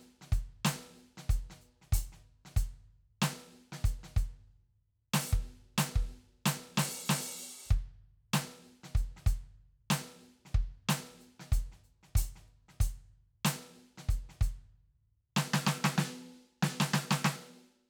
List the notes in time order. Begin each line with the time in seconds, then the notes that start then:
0.01 closed hi-hat
0.22 snare
0.33 closed hi-hat, kick
0.65 closed hi-hat, snare
0.97 closed hi-hat
1.18 snare
1.30 closed hi-hat, kick
1.51 snare
1.62 closed hi-hat
1.82 snare
1.93 closed hi-hat, kick
2.13 snare
2.46 snare
2.57 closed hi-hat, kick
3.22 closed hi-hat, snare
3.73 snare
3.85 closed hi-hat, kick
4.04 snare
4.17 closed hi-hat, kick
5.14 open hi-hat, snare
5.31 kick, hi-hat pedal
5.78 closed hi-hat, snare
5.96 kick
6.46 open hi-hat, snare
6.78 open hi-hat, snare
7.10 open hi-hat, snare
7.67 kick, hi-hat pedal
7.71 kick
8.34 closed hi-hat, snare
8.66 closed hi-hat
8.84 snare
8.95 closed hi-hat, kick, snare
9.17 snare
9.27 closed hi-hat, kick
9.91 closed hi-hat, snare
10.46 snare
10.55 kick
10.89 closed hi-hat, snare
11.18 closed hi-hat, snare
11.40 snare
11.53 closed hi-hat, kick
11.72 snare
11.84 closed hi-hat
12.03 snare
12.16 closed hi-hat, kick
12.36 snare
12.45 snare, closed hi-hat
12.69 snare
12.81 closed hi-hat, kick
13.45 closed hi-hat, snare
13.98 snare
14.09 closed hi-hat, kick
14.30 snare
14.41 closed hi-hat, kick
15.37 snare
15.54 snare
15.67 snare
15.85 snare
15.98 snare
16.63 snare
16.81 snare
16.94 snare
17.11 snare
17.25 snare